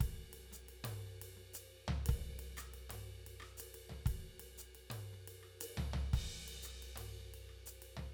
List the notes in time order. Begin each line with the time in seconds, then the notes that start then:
0.01 kick, ride
0.09 snare
0.34 ride
0.52 snare, hi-hat pedal
0.69 ride
0.85 mid tom, ride
1.22 ride
1.37 snare
1.43 ride
1.54 hi-hat pedal, ride
1.88 floor tom
2.06 kick, ride
2.40 ride
2.57 cross-stick, hi-hat pedal
2.74 ride
2.90 mid tom, ride
3.05 snare
3.27 ride
3.40 cross-stick
3.43 cross-stick
3.58 hi-hat pedal, ride
3.75 ride
3.90 floor tom
4.06 kick, ride
4.15 snare
4.40 ride
4.57 snare, hi-hat pedal
4.75 ride
4.91 mid tom, ride
5.13 snare
5.28 ride
5.43 cross-stick
5.61 hi-hat pedal, ride
5.78 floor tom
5.94 floor tom
6.14 kick, ride
6.35 snare
6.48 ride
6.63 cross-stick, snare, hi-hat pedal
6.83 ride
6.96 mid tom, ride
7.20 snare
7.24 snare
7.34 ride
7.50 cross-stick
7.66 hi-hat pedal, ride
7.83 ride
7.97 floor tom